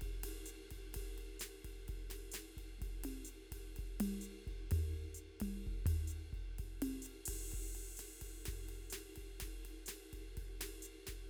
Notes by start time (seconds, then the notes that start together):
0.02 kick, ride
0.08 kick
0.24 snare, ride
0.46 hi-hat pedal, ride
0.71 kick, ride
0.77 kick
0.94 kick, snare, ride
1.02 kick
1.18 ride
1.40 snare, hi-hat pedal, ride
1.65 kick, ride
1.89 kick, ride
1.95 kick
2.10 snare, ride
2.32 snare, hi-hat pedal, ride
2.58 kick, ride
2.79 kick, mid tom, ride
2.88 kick
3.04 high tom, ride
3.25 hi-hat pedal
3.30 ride
3.52 kick, ride
3.58 kick
3.77 kick, ride
3.84 kick
4.01 mid tom, ride
4.22 hi-hat pedal
4.48 kick, ride
4.53 kick
4.72 kick, floor tom, ride
4.79 kick
5.15 hi-hat pedal, ride
5.41 kick, mid tom, ride
5.47 kick
5.67 kick
5.73 kick
5.86 floor tom, ride
6.08 hi-hat pedal
6.12 ride
6.33 kick, ride
6.38 kick
6.59 kick, ride
6.65 kick
6.82 high tom, ride
7.03 hi-hat pedal
7.07 ride
7.26 kick, crash, ride
7.34 kick
7.52 kick, ride
7.60 kick
7.75 ride
7.98 snare, hi-hat pedal, ride
8.22 kick, ride
8.46 kick, snare, ride
8.54 kick
8.69 ride
8.91 snare, hi-hat pedal, ride
9.16 kick, ride
9.40 kick, snare, ride
9.48 kick
9.66 ride
9.87 snare, hi-hat pedal, ride
10.06 snare
10.14 kick, ride
10.38 kick, ride
10.43 kick
10.61 snare, ride
10.83 hi-hat pedal
11.07 kick, snare, ride